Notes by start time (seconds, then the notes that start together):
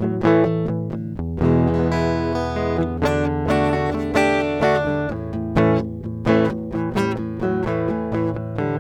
0.00 A2 F#3
0.06 A3
0.23 A2 E3
0.29 A3
0.46 E3 A3
0.66 A2 E3 A3
0.92 A2 D3
1.21 E2
1.39 E2
1.44 B2 E3 G#3
1.69 E2 B2
1.76 E3 G#3
1.81 B3
1.93 B3 E4
2.03 B3
2.37 B3
2.47 B3
2.58 G#3
2.79 E3 B3
3.04 D3 G#3 D4
3.15 D4 F#4
3.48 D3 A3
3.52 D4 F#4
3.61 D4
3.71 D4 F#4
3.82 D4
3.91 D3 D4 G4
3.97 A3
4.17 A3 D4 G4
4.36 G4
4.62 D3 A3 D4
4.66 F#4
4.77 G3
4.89 D3
5.12 A2 E3
5.35 A2 E3
5.57 A2 E3 A3
5.61 C#4
5.80 A2
6.06 A2
6.27 A2 E3 A3
6.32 C#4
6.51 A2
6.73 A2 E3
6.94 A2
6.98 G3
7.17 A2
7.42 A2 F#3
7.65 A2 E3
7.90 A2 E3
8.14 A2 E3
8.60 D3